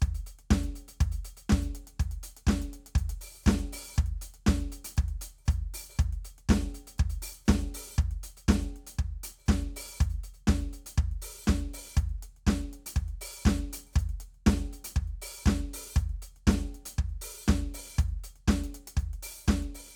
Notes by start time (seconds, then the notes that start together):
0.02 kick, closed hi-hat
0.14 closed hi-hat
0.26 closed hi-hat
0.39 closed hi-hat
0.50 kick, snare
0.63 closed hi-hat
0.75 closed hi-hat
0.88 closed hi-hat
1.00 kick, closed hi-hat
1.12 closed hi-hat
1.25 closed hi-hat
1.37 closed hi-hat
1.49 kick, snare
1.61 closed hi-hat
1.75 closed hi-hat
1.87 closed hi-hat
1.99 kick, closed hi-hat
2.11 closed hi-hat
2.23 closed hi-hat
2.37 closed hi-hat
2.47 kick, snare
2.62 closed hi-hat
2.73 closed hi-hat
2.86 closed hi-hat
2.95 kick, closed hi-hat
3.09 closed hi-hat
3.21 open hi-hat
3.34 open hi-hat
3.43 kick, hi-hat pedal
3.47 snare
3.59 closed hi-hat
3.73 open hi-hat
3.85 open hi-hat
3.94 kick, closed hi-hat, hi-hat pedal
4.06 closed hi-hat
4.18 closed hi-hat, kick
4.34 closed hi-hat
4.46 kick, snare
4.60 closed hi-hat
4.72 closed hi-hat
4.84 closed hi-hat
4.97 kick, closed hi-hat
5.08 closed hi-hat
5.21 closed hi-hat
5.38 open hi-hat
5.45 kick, hi-hat pedal
5.50 closed hi-hat
5.74 open hi-hat
5.89 open hi-hat
5.95 kick, hi-hat pedal
6.00 closed hi-hat
6.12 closed hi-hat
6.25 closed hi-hat
6.38 closed hi-hat
6.49 kick, snare
6.63 closed hi-hat
6.69 kick
6.74 closed hi-hat
6.87 closed hi-hat
6.98 kick, closed hi-hat
7.10 closed hi-hat
7.22 open hi-hat
7.37 open hi-hat
7.45 kick, snare, hi-hat pedal
7.61 closed hi-hat
7.66 kick
7.74 open hi-hat
7.88 open hi-hat
7.93 hi-hat pedal
7.98 kick, closed hi-hat
8.11 closed hi-hat
8.23 closed hi-hat
8.37 closed hi-hat
8.48 kick, snare
8.63 closed hi-hat
8.76 closed hi-hat
8.87 closed hi-hat
8.98 kick, closed hi-hat
9.23 closed hi-hat
9.38 open hi-hat
9.46 kick, snare, hi-hat pedal
9.61 closed hi-hat
9.68 kick
9.76 open hi-hat
9.89 open hi-hat
9.97 kick, hi-hat pedal
10.01 closed hi-hat
10.10 closed hi-hat
10.20 closed hi-hat, kick
10.34 closed hi-hat
10.47 kick, snare
10.60 closed hi-hat
10.73 closed hi-hat
10.86 closed hi-hat
10.97 kick, closed hi-hat
11.11 closed hi-hat
11.22 open hi-hat
11.45 kick, snare, hi-hat pedal
11.60 closed hi-hat
11.73 open hi-hat
11.88 open hi-hat
11.94 kick, closed hi-hat, hi-hat pedal
12.09 closed hi-hat
12.18 kick
12.22 closed hi-hat
12.36 closed hi-hat
12.47 kick, snare
12.61 closed hi-hat
12.73 closed hi-hat
12.86 closed hi-hat
12.96 kick, closed hi-hat
13.08 closed hi-hat
13.21 open hi-hat
13.42 kick, hi-hat pedal
13.46 snare
13.58 closed hi-hat
13.63 kick
13.73 open hi-hat
13.87 open hi-hat
13.93 kick, hi-hat pedal
13.99 closed hi-hat
14.09 closed hi-hat
14.20 closed hi-hat
14.34 closed hi-hat
14.46 kick, snare
14.60 closed hi-hat
14.73 closed hi-hat
14.84 closed hi-hat
14.96 kick, closed hi-hat
15.07 closed hi-hat
15.22 open hi-hat
15.37 open hi-hat
15.42 kick, hi-hat pedal
15.47 snare
15.59 closed hi-hat
15.73 open hi-hat
15.88 open hi-hat
15.94 kick, closed hi-hat, hi-hat pedal
16.09 closed hi-hat
16.16 kick
16.22 closed hi-hat
16.36 closed hi-hat
16.47 kick, snare
16.61 closed hi-hat
16.74 closed hi-hat
16.85 closed hi-hat
16.98 kick, closed hi-hat
17.09 closed hi-hat
17.21 open hi-hat
17.35 open hi-hat
17.47 kick, snare, hi-hat pedal
17.74 open hi-hat
17.88 open hi-hat
17.96 kick, closed hi-hat, hi-hat pedal
18.08 closed hi-hat
18.19 kick
18.24 closed hi-hat
18.36 closed hi-hat
18.48 kick, snare
18.64 closed hi-hat
18.74 closed hi-hat
18.87 closed hi-hat
18.97 kick, closed hi-hat
19.13 closed hi-hat
19.22 open hi-hat
19.38 open hi-hat
19.44 kick, snare, hi-hat pedal
19.62 closed hi-hat
19.74 open hi-hat
19.89 open hi-hat